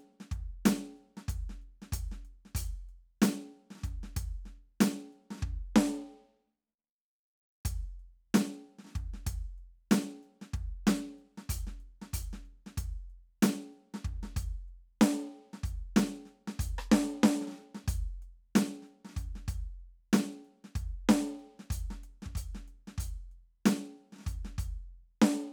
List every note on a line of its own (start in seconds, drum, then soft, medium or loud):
0.01 closed hi-hat soft
0.21 snare soft
0.32 kick medium
0.32 closed hi-hat soft
0.66 closed hi-hat loud
0.66 snare loud
0.97 closed hi-hat soft
1.18 snare soft
1.29 kick medium
1.29 closed hi-hat medium
1.50 snare soft
1.62 closed hi-hat soft
1.82 snare soft
1.93 kick medium
1.93 closed hi-hat loud
2.12 snare soft
2.26 closed hi-hat soft
2.46 snare soft
2.55 closed hi-hat loud
2.55 kick medium
2.89 closed hi-hat soft
3.22 closed hi-hat loud
3.22 snare loud
3.71 snare soft
3.76 snare soft
3.79 snare soft
3.82 kick medium
3.82 snare soft
3.85 snare soft
3.85 closed hi-hat medium
4.04 snare soft
4.17 kick medium
4.17 closed hi-hat loud
4.46 snare soft
4.81 closed hi-hat loud
4.81 snare loud
5.13 closed hi-hat soft
5.31 snare soft
5.35 snare soft
5.38 snare soft
5.43 kick medium
5.76 snare loud
7.66 kick medium
7.66 closed hi-hat loud
8.00 closed hi-hat soft
8.35 closed hi-hat loud
8.35 snare loud
8.79 snare soft
8.85 snare soft
8.87 snare soft
8.89 snare soft
8.96 kick medium
8.96 closed hi-hat soft
9.14 snare soft
9.27 kick medium
9.27 closed hi-hat loud
9.59 closed hi-hat soft
9.92 closed hi-hat loud
9.92 snare loud
10.24 closed hi-hat soft
10.42 snare soft
10.54 kick medium
10.54 closed hi-hat soft
10.88 closed hi-hat medium
10.88 snare loud
11.19 closed hi-hat soft
11.38 snare soft
11.50 closed hi-hat loud
11.50 kick medium
11.67 snare soft
11.81 closed hi-hat soft
12.02 snare soft
12.14 closed hi-hat loud
12.14 kick medium
12.34 snare soft
12.46 closed hi-hat soft
12.67 snare soft
12.78 kick medium
12.78 closed hi-hat loud
13.11 closed hi-hat soft
13.43 closed hi-hat loud
13.43 snare loud
13.74 closed hi-hat soft
13.95 snare medium
14.05 kick medium
14.05 closed hi-hat soft
14.24 snare soft
14.37 closed hi-hat medium
14.37 kick medium
14.69 closed hi-hat soft
15.02 closed hi-hat loud
15.02 snare loud
15.54 snare soft
15.64 closed hi-hat medium
15.64 kick medium
15.97 closed hi-hat medium
15.97 snare loud
16.26 snare soft
16.26 closed hi-hat soft
16.48 snare medium
16.60 closed hi-hat loud
16.60 kick medium
16.79 cross-stick medium
16.92 snare loud
17.24 snare loud
17.42 snare soft
17.48 snare soft
17.55 snare soft
17.75 snare soft
17.84 kick soft
17.88 closed hi-hat loud
17.88 kick loud
18.23 closed hi-hat soft
18.56 closed hi-hat loud
18.56 snare loud
18.83 snare soft
18.83 closed hi-hat soft
19.05 snare soft
19.10 snare soft
19.12 snare soft
19.17 closed hi-hat medium
19.17 kick medium
19.17 snare soft
19.36 snare soft
19.49 closed hi-hat medium
19.49 kick medium
19.80 closed hi-hat soft
20.14 closed hi-hat medium
20.14 snare loud
20.45 closed hi-hat soft
20.65 snare soft
20.76 closed hi-hat medium
20.76 kick medium
21.10 closed hi-hat medium
21.10 snare loud
21.40 closed hi-hat soft
21.60 snare soft
21.71 closed hi-hat medium
21.71 kick medium
21.91 snare soft
22.04 closed hi-hat soft
22.23 kick soft
22.23 snare soft
22.36 closed hi-hat medium
22.36 kick medium
22.55 snare soft
22.68 closed hi-hat soft
22.88 snare soft
22.98 closed hi-hat medium
22.98 kick medium
23.32 closed hi-hat soft
23.66 closed hi-hat loud
23.66 snare loud
24.13 snare soft
24.17 snare soft
24.19 snare soft
24.21 snare soft
24.24 kick medium
24.24 snare soft
24.28 closed hi-hat medium
24.45 snare soft
24.59 closed hi-hat medium
24.59 kick medium
25.22 snare loud